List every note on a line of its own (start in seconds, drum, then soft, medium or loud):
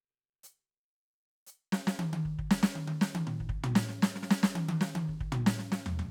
0.43 hi-hat pedal medium
1.47 hi-hat pedal medium
1.72 snare loud
1.87 snare loud
1.99 high tom loud
2.13 high tom loud
2.25 kick soft
2.39 kick soft
2.47 kick soft
2.47 snare loud
2.63 snare loud
2.75 high tom loud
2.88 high tom loud
3.01 snare loud
3.15 high tom loud
3.27 mid tom loud
3.40 kick soft
3.49 kick medium
3.64 mid tom loud
3.75 snare loud
3.89 snare soft
4.02 snare loud
4.15 snare medium
4.23 snare medium
4.31 snare loud
4.43 kick soft
4.43 snare loud
4.55 high tom loud
4.69 high tom loud
4.81 snare loud
4.95 high tom loud
5.09 kick soft
5.21 kick medium
5.32 mid tom loud
5.46 snare loud
5.59 snare medium
5.72 snare medium
5.86 floor tom loud
5.99 floor tom medium